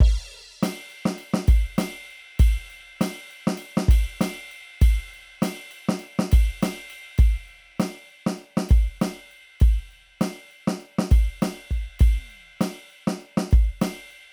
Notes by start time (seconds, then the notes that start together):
0.00 kick, crash
0.63 snare, ride
0.90 ride
1.05 snare
1.18 ride
1.34 snare
1.48 kick, ride
1.78 snare, ride
2.10 ride
2.39 kick, ride
2.70 ride
3.01 snare, ride
3.31 ride
3.47 snare
3.57 ride
3.77 snare
3.88 kick, ride
4.21 snare, ride
4.51 ride
4.81 kick, ride
5.13 ride
5.42 snare, ride
5.71 ride
5.89 snare
5.99 ride
6.19 snare
6.32 kick, ride
6.62 snare, ride
6.90 ride
7.18 kick, ride bell
7.48 ride bell
7.80 snare, ride bell
8.09 ride bell
8.27 snare
8.38 ride bell
8.57 snare
8.69 kick, ride bell
9.01 snare, ride bell
9.31 ride bell
9.60 kick, ride bell
9.91 ride bell
10.21 snare, ride bell
10.51 ride bell
10.67 snare
10.80 ride bell
10.98 snare
11.11 kick, ride bell
11.42 snare, ride bell
11.71 kick, ride
11.99 kick, snare, ride, floor tom
12.30 ride bell
12.61 snare, ride bell
12.90 ride bell
13.07 snare
13.21 ride bell
13.37 snare
13.51 kick, ride bell
13.81 snare, ride bell
14.11 ride